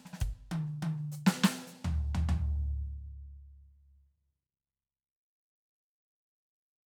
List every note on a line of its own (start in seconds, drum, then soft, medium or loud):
0.05 snare soft
0.05 closed hi-hat soft
0.13 snare soft
0.21 kick medium
0.21 closed hi-hat medium
0.52 high tom loud
0.67 snare soft
0.83 high tom loud
0.97 snare soft
1.12 hi-hat pedal medium
1.27 snare loud
1.44 snare loud
1.67 hi-hat pedal medium
1.85 floor tom loud
2.15 floor tom loud
2.29 floor tom loud